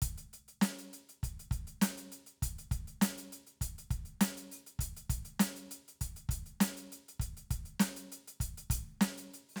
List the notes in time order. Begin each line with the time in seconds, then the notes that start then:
0.01 closed hi-hat, kick
0.18 closed hi-hat
0.33 closed hi-hat
0.48 closed hi-hat
0.61 closed hi-hat, snare
0.79 open hi-hat
0.93 closed hi-hat
1.09 closed hi-hat
1.23 closed hi-hat, kick
1.39 closed hi-hat
1.51 closed hi-hat, kick
1.67 closed hi-hat
1.81 closed hi-hat, snare, hi-hat pedal
1.97 open hi-hat
2.12 closed hi-hat
2.26 closed hi-hat
2.42 closed hi-hat, kick
2.58 closed hi-hat
2.71 closed hi-hat, kick
2.87 closed hi-hat
3.01 closed hi-hat, snare
3.18 closed hi-hat
3.32 closed hi-hat
3.47 closed hi-hat
3.61 closed hi-hat, kick
3.78 closed hi-hat
3.91 closed hi-hat, kick
4.05 closed hi-hat
4.21 closed hi-hat, snare
4.37 closed hi-hat
4.51 open hi-hat
4.66 closed hi-hat
4.79 closed hi-hat, kick
4.96 closed hi-hat
5.09 closed hi-hat, kick
5.25 closed hi-hat
5.40 closed hi-hat, snare
5.56 closed hi-hat
5.71 closed hi-hat
5.88 closed hi-hat
6.01 closed hi-hat, kick
6.16 closed hi-hat
6.29 closed hi-hat, kick
6.46 closed hi-hat
6.60 closed hi-hat, snare
6.77 closed hi-hat
6.92 closed hi-hat
7.08 closed hi-hat
7.20 closed hi-hat, kick
7.37 closed hi-hat
7.50 closed hi-hat, kick
7.65 closed hi-hat
7.80 closed hi-hat, snare
7.96 open hi-hat
8.12 closed hi-hat
8.28 closed hi-hat
8.40 closed hi-hat, kick
8.57 closed hi-hat
8.70 open hi-hat, kick
9.01 open hi-hat, snare, hi-hat pedal
9.18 closed hi-hat
9.34 closed hi-hat
9.49 open hi-hat
9.56 snare